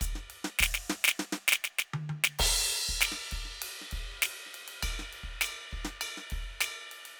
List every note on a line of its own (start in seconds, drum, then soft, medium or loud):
0.01 kick medium
0.01 hi-hat pedal loud
0.01 ride bell medium
0.09 kick soft
0.12 kick soft
0.12 snare soft
0.30 ride medium
0.44 snare medium
0.59 kick soft
0.59 snare loud
0.59 hi-hat pedal loud
0.63 snare loud
0.74 snare medium
0.90 snare medium
1.04 snare loud
1.08 snare loud
1.19 snare medium
1.32 snare medium
1.48 snare loud
1.52 snare loud
1.64 snare medium
1.79 snare medium
1.94 high tom loud
2.09 high tom medium
2.24 snare loud
2.39 kick medium
2.39 crash loud
2.47 kick soft
2.51 kick soft
2.89 kick soft
3.01 snare loud
3.01 hi-hat pedal medium
3.01 ride bell loud
3.12 snare soft
3.31 kick soft
3.31 ride medium
3.39 kick soft
3.45 snare soft
3.62 hi-hat pedal soft
3.62 ride loud
3.81 snare soft
3.91 kick soft
3.91 ride medium
3.99 kick soft
4.22 snare loud
4.22 hi-hat pedal medium
4.22 ride loud
4.46 snare soft
4.54 ride medium
4.61 snare soft
4.68 ride medium
4.83 kick soft
4.83 hi-hat pedal soft
4.83 ride bell loud
4.90 kick soft
4.92 kick soft
4.99 snare soft
5.13 ride medium
5.24 kick soft
5.41 snare medium
5.41 hi-hat pedal medium
5.41 ride bell loud
5.71 kick soft
5.71 ride soft
5.85 snare medium
6.01 ride bell loud
6.17 snare soft
6.30 kick soft
6.30 ride medium
6.39 kick soft
6.61 snare medium
6.61 hi-hat pedal medium
6.61 ride bell loud
6.92 ride medium
7.05 ride medium